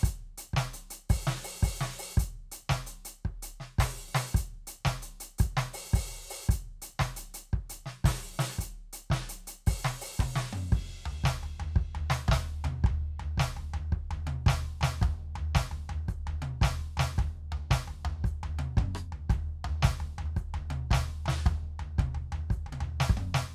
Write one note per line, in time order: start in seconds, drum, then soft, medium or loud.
0.01 closed hi-hat loud
0.01 kick loud
0.01 hi-hat pedal soft
0.38 closed hi-hat loud
0.54 kick medium
0.54 snare loud
0.74 closed hi-hat loud
0.91 closed hi-hat loud
1.10 open hi-hat loud
1.10 kick loud
1.27 snare loud
1.44 open hi-hat loud
1.63 open hi-hat loud
1.63 kick loud
1.81 snare loud
1.99 open hi-hat loud
2.14 kick loud
2.14 hi-hat pedal soft
2.20 closed hi-hat loud
2.52 closed hi-hat loud
2.70 kick medium
2.70 snare loud
2.87 closed hi-hat loud
3.05 closed hi-hat loud
3.25 kick medium
3.43 closed hi-hat loud
3.60 snare medium
3.79 open hi-hat loud
3.79 kick loud
3.79 snare loud
4.15 open hi-hat loud
4.15 snare loud
4.31 kick loud
4.31 hi-hat pedal soft
4.37 closed hi-hat loud
4.67 closed hi-hat loud
4.85 kick medium
4.85 snare loud
5.03 closed hi-hat loud
5.21 closed hi-hat loud
5.39 closed hi-hat loud
5.39 kick loud
5.57 snare loud
5.74 open hi-hat loud
5.94 open hi-hat loud
5.94 kick loud
6.30 open hi-hat loud
6.47 kick loud
6.47 hi-hat pedal medium
6.51 closed hi-hat loud
6.82 closed hi-hat loud
7.00 kick medium
7.00 snare loud
7.17 closed hi-hat loud
7.34 closed hi-hat loud
7.53 kick loud
7.70 closed hi-hat loud
7.86 snare medium
8.05 open hi-hat loud
8.05 kick loud
8.05 snare loud
8.39 open hi-hat loud
8.39 snare loud
8.57 kick medium
8.57 hi-hat pedal soft
8.61 closed hi-hat loud
8.93 closed hi-hat loud
9.10 kick loud
9.10 snare loud
9.29 closed hi-hat loud
9.48 closed hi-hat loud
9.67 open hi-hat loud
9.67 kick loud
9.85 snare loud
10.01 open hi-hat loud
10.20 kick loud
10.20 high tom loud
10.36 snare loud
10.53 mid tom loud
10.73 kick loud
10.73 ride medium
11.06 floor tom loud
11.24 kick loud
11.24 snare loud
11.24 hi-hat pedal medium
11.43 floor tom medium
11.60 floor tom loud
11.76 kick loud
11.95 floor tom loud
12.10 snare loud
12.28 kick loud
12.28 snare loud
12.28 floor tom loud
12.65 floor tom loud
12.65 high tom loud
12.84 kick loud
12.84 floor tom loud
13.20 floor tom loud
13.38 kick loud
13.38 snare loud
13.38 hi-hat pedal soft
13.57 floor tom loud
13.74 floor tom loud
13.93 kick loud
14.11 floor tom loud
14.27 high tom loud
14.47 kick loud
14.47 snare loud
14.47 floor tom loud
14.81 snare loud
14.81 floor tom loud
15.02 kick loud
15.02 hi-hat pedal medium
15.02 floor tom loud
15.36 floor tom loud
15.55 kick loud
15.55 snare loud
15.72 floor tom loud
15.90 floor tom loud
16.09 kick loud
16.09 hi-hat pedal medium
16.27 floor tom loud
16.42 high tom loud
16.62 kick loud
16.62 snare loud
16.62 floor tom loud
16.98 snare loud
16.98 floor tom loud
17.17 kick loud
17.17 floor tom loud
17.17 hi-hat pedal soft
17.52 floor tom loud
17.71 kick loud
17.71 snare loud
17.88 floor tom medium
18.05 floor tom loud
18.25 kick loud
18.25 hi-hat pedal medium
18.44 floor tom loud
18.59 high tom loud
18.77 kick loud
18.77 mid tom loud
18.95 cross-stick medium
19.13 floor tom loud
19.30 kick loud
19.30 floor tom loud
19.30 hi-hat pedal medium
19.65 floor tom loud
19.83 kick loud
19.83 snare loud
20.01 floor tom loud
20.19 floor tom loud
20.26 floor tom medium
20.37 kick loud
20.37 hi-hat pedal medium
20.54 floor tom loud
20.71 high tom loud
20.91 kick loud
20.91 snare loud
20.91 floor tom loud
21.26 snare loud
21.26 floor tom loud
21.46 kick loud
21.46 hi-hat pedal medium
21.46 floor tom loud
21.80 floor tom loud
21.99 kick loud
21.99 high tom loud
22.15 floor tom medium
22.33 floor tom loud
22.40 floor tom soft
22.51 kick loud
22.51 hi-hat pedal medium
22.67 floor tom medium
22.73 high tom loud
22.81 floor tom loud
23.01 snare loud
23.10 kick loud
23.17 mid tom loud
23.35 snare loud